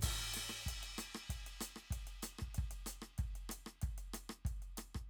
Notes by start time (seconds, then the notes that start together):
0.01 closed hi-hat, kick, hi-hat pedal, crash
0.34 cross-stick, open hi-hat
0.49 cross-stick
0.61 hi-hat pedal
0.66 kick, closed hi-hat
0.83 closed hi-hat
0.98 closed hi-hat, cross-stick
1.15 cross-stick
1.30 kick, closed hi-hat
1.47 closed hi-hat
1.61 closed hi-hat, cross-stick
1.76 cross-stick
1.91 kick, closed hi-hat
2.07 closed hi-hat
2.23 closed hi-hat, cross-stick
2.39 kick, cross-stick
2.55 kick, closed hi-hat
2.71 closed hi-hat
2.86 closed hi-hat, cross-stick
3.02 cross-stick
3.18 kick, closed hi-hat
3.36 closed hi-hat
3.49 cross-stick, closed hi-hat
3.66 cross-stick
3.82 kick, closed hi-hat
3.98 closed hi-hat
4.14 cross-stick, closed hi-hat
4.30 cross-stick
4.45 kick, closed hi-hat
4.62 closed hi-hat
4.78 cross-stick, closed hi-hat
4.95 kick, cross-stick